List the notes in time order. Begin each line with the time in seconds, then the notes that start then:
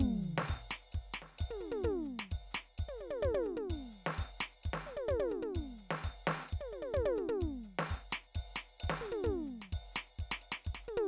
0.01 kick, ride bell
0.23 hi-hat pedal, ride
0.38 snare
0.49 kick, ride
0.56 kick
0.69 snare, hi-hat pedal
0.90 hi-hat pedal, ride bell
0.95 kick
1.14 snare, hi-hat pedal
1.22 snare
1.39 kick, ride
1.51 mid tom
1.60 hi-hat pedal, mid tom
1.72 mid tom
1.84 kick, mid tom
2.05 hi-hat pedal
2.20 snare
2.32 kick, ride bell
2.51 snare, hi-hat pedal
2.78 kick, ride
2.89 high tom
2.98 hi-hat pedal, high tom
3.23 kick, high tom
3.31 kick, high tom
3.43 hi-hat pedal, mid tom
3.57 mid tom
3.70 kick, ride bell
3.76 kick
3.92 hi-hat pedal, ride
4.07 snare
4.19 kick, ride bell
4.38 snare, hi-hat pedal
4.64 kick, ride
4.74 snare
4.84 hi-hat pedal, high tom
5.09 kick, high tom
5.20 high tom
5.29 hi-hat pedal, mid tom
5.43 mid tom
5.55 kick, ride bell
5.78 hi-hat pedal
5.91 snare
6.04 kick, ride bell
6.24 snare, hi-hat pedal
6.49 kick, ride
6.61 high tom
6.72 hi-hat pedal, high tom
6.82 high tom
6.94 kick, high tom
7.03 kick, high tom
7.16 hi-hat pedal, mid tom
7.29 mid tom
7.41 kick, ride bell
7.48 kick
7.64 hi-hat pedal, ride
7.79 snare
7.90 kick, ride bell
7.97 kick
8.10 snare, hi-hat pedal
8.35 kick, ride bell
8.56 snare, hi-hat pedal
8.81 kick, ride
8.90 snare
9.01 hi-hat pedal, mid tom
9.12 mid tom
9.24 kick, mid tom
9.32 kick
9.47 hi-hat pedal
9.62 snare
9.73 kick, ride
9.92 hi-hat pedal
9.96 snare
10.19 kick, ride bell
10.32 snare
10.38 hi-hat pedal, ride
10.52 snare
10.65 kick, ride bell
10.73 kick, snare
10.84 hi-hat pedal
10.88 mid tom
10.97 mid tom